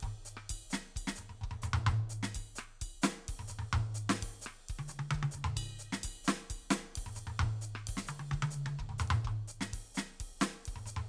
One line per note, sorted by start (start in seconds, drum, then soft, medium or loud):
0.01 kick soft
0.01 mid tom medium
0.01 ride soft
0.09 kick soft
0.26 hi-hat pedal medium
0.37 cross-stick medium
0.50 kick soft
0.50 ride bell medium
0.71 snare medium
0.71 hi-hat pedal medium
0.97 kick soft
0.97 ride bell medium
1.08 snare medium
1.16 hi-hat pedal medium
1.16 mid tom soft
1.30 mid tom medium
1.42 kick soft
1.42 mid tom medium
1.50 kick soft
1.50 mid tom medium
1.62 hi-hat pedal medium
1.62 mid tom loud
1.74 mid tom loud
1.87 kick soft
1.87 mid tom loud
2.10 hi-hat pedal medium
2.23 snare medium
2.35 kick soft
2.35 ride bell medium
2.56 cross-stick medium
2.56 hi-hat pedal medium
2.82 kick soft
2.82 ride bell medium
3.03 snare loud
3.03 hi-hat pedal medium
3.29 kick soft
3.29 ride medium
3.40 mid tom medium
3.48 hi-hat pedal medium
3.48 mid tom medium
3.59 mid tom medium
3.73 kick soft
3.73 mid tom loud
3.80 kick soft
3.95 hi-hat pedal medium
4.10 snare loud
4.15 snare soft
4.23 kick soft
4.23 ride medium
4.42 hi-hat pedal medium
4.47 cross-stick medium
4.69 kick soft
4.69 ride medium
4.79 high tom medium
4.89 hi-hat pedal medium
4.89 high tom medium
5.00 high tom medium
5.11 kick soft
5.11 high tom loud
5.20 kick soft
5.20 high tom loud
5.32 hi-hat pedal medium
5.32 mid tom medium
5.45 mid tom loud
5.57 kick soft
5.57 ride bell loud
5.79 hi-hat pedal medium
5.93 snare medium
6.04 kick soft
6.04 ride bell medium
6.25 snare loud
6.25 hi-hat pedal medium
6.51 kick soft
6.51 ride bell medium
6.71 snare loud
6.71 hi-hat pedal medium
6.96 kick soft
6.96 ride loud
7.04 kick soft
7.04 mid tom medium
7.16 hi-hat pedal medium
7.28 mid tom medium
7.40 kick soft
7.40 mid tom loud
7.51 mid tom soft
7.62 hi-hat pedal medium
7.76 cross-stick medium
7.88 kick soft
7.88 ride loud
7.97 snare medium
8.07 hi-hat pedal medium
8.07 high tom medium
8.20 high tom medium
8.32 kick soft
8.32 high tom loud
8.43 high tom loud
8.51 hi-hat pedal medium
8.51 high tom soft
8.67 high tom medium
8.79 kick soft
8.79 mid tom medium
8.90 mid tom medium
8.99 hi-hat pedal medium
8.99 mid tom loud
9.08 mid tom loud
9.08 ride soft
9.25 kick soft
9.25 mid tom medium
9.31 kick soft
9.34 kick soft
9.48 hi-hat pedal medium
9.61 snare medium
9.74 kick soft
9.74 ride medium
9.95 snare medium
9.95 hi-hat pedal medium
10.21 kick soft
10.21 ride medium
10.41 snare loud
10.41 hi-hat pedal medium
10.66 kick soft
10.66 ride medium
10.76 mid tom medium
10.87 hi-hat pedal medium
10.97 mid tom medium